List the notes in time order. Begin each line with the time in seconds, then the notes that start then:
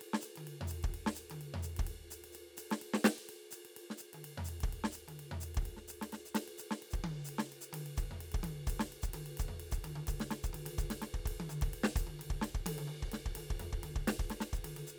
0.01 ride
0.13 snare
0.21 hi-hat pedal, ride
0.36 high tom, ride
0.47 ride
0.61 floor tom
0.67 hi-hat pedal, ride
0.83 kick, ride
0.94 ride
1.06 snare
1.15 hi-hat pedal, ride
1.30 high tom, ride
1.41 ride
1.54 floor tom
1.62 hi-hat pedal, ride
1.77 kick, ride
2.10 hi-hat pedal, ride
2.24 ride
2.32 hi-hat pedal, ride
2.57 hi-hat pedal, ride
2.71 snare, ride
2.82 ride
2.94 snare
3.04 snare, hi-hat pedal, ride
3.18 ride
3.29 ride
3.51 hi-hat pedal, ride
3.65 ride
3.76 ride
3.90 snare
3.98 hi-hat pedal, ride
4.13 high tom, ride
4.24 ride
4.38 floor tom
4.45 hi-hat pedal
4.49 ride
4.61 kick, ride
4.73 ride
4.84 snare
4.92 hi-hat pedal, ride
5.08 high tom, ride
5.19 ride
5.31 floor tom
5.40 hi-hat pedal, ride
5.55 kick, ride
5.62 hi-hat pedal, ride
5.77 snare
5.88 hi-hat pedal, ride
6.01 snare, ride
6.12 snare, ride
6.25 hi-hat pedal
6.35 snare, ride
6.48 ride
6.58 hi-hat pedal, ride
6.71 snare
6.82 ride
6.90 kick, hi-hat pedal
6.95 ride
7.04 high tom, ride
7.25 hi-hat pedal
7.29 ride
7.38 snare, ride
7.52 ride
7.61 hi-hat pedal
7.73 high tom, ride
7.86 ride
7.97 kick, hi-hat pedal, ride
8.11 floor tom
8.21 ride
8.32 kick, ride
8.43 high tom, ride
8.67 kick, hi-hat pedal, ride
8.79 snare, ride
8.92 ride
9.02 kick, hi-hat pedal
9.13 high tom, ride
9.26 ride
9.37 kick, hi-hat pedal, ride
9.48 floor tom
9.60 ride
9.71 kick, hi-hat pedal, ride
9.84 high tom, ride
9.96 high tom
10.07 kick, hi-hat pedal, ride
10.20 snare, ride
10.31 snare, ride
10.43 kick, hi-hat pedal
10.53 high tom, ride
10.66 high tom, ride
10.78 kick, hi-hat pedal
10.90 snare, ride
11.02 snare, ride
11.14 kick
11.25 kick, ride
11.40 high tom
11.49 hi-hat pedal, high tom
11.61 kick, ride
11.73 ride
11.83 snare
11.96 kick, hi-hat pedal, ride
12.07 high tom
12.19 high tom, ride
12.30 kick
12.42 snare, ride
12.54 kick
12.66 high tom, ride
12.78 high tom, ride
12.87 high tom, ride
13.02 kick
13.12 snare, ride
13.26 kick
13.35 high tom, ride
13.50 kick
13.60 floor tom, ride
13.72 kick
13.83 high tom, ride
13.96 kick
14.07 snare, ride
14.19 kick
14.30 snare, ride
14.42 ride
14.53 kick, hi-hat pedal
14.64 high tom, ride
14.76 high tom, ride
14.87 hi-hat pedal